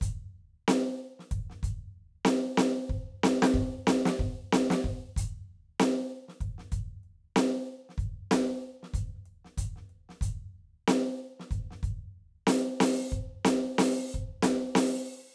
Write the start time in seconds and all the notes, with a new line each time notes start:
0.01 closed hi-hat, kick
0.68 closed hi-hat, snare
0.94 snare
1.19 snare
1.31 kick, closed hi-hat
1.50 snare
1.63 closed hi-hat, kick
2.25 snare
2.57 snare
2.89 kick
3.23 snare
3.42 snare
3.54 kick
3.87 snare
4.05 snare
4.19 kick
4.53 snare
4.70 snare
4.84 kick
5.16 closed hi-hat, kick
5.80 snare, closed hi-hat
6.28 snare
6.40 kick, closed hi-hat
6.58 snare
6.72 closed hi-hat, kick
7.03 closed hi-hat
7.36 closed hi-hat, snare
7.66 closed hi-hat
7.89 snare
7.98 closed hi-hat, kick
8.31 closed hi-hat, snare
8.63 closed hi-hat
8.83 snare
8.93 closed hi-hat, kick
9.15 snare
9.26 closed hi-hat
9.45 snare
9.57 closed hi-hat, kick
9.76 snare
9.89 closed hi-hat
10.09 snare
10.12 snare
10.21 closed hi-hat, kick
10.88 closed hi-hat, snare
11.39 snare
11.51 closed hi-hat, kick
11.71 snare
11.83 closed hi-hat, kick
12.47 open hi-hat, snare
12.80 open hi-hat, snare
13.11 kick, hi-hat pedal
13.45 closed hi-hat, snare
13.78 open hi-hat, snare
14.13 kick, hi-hat pedal
14.43 closed hi-hat, snare
14.75 open hi-hat, snare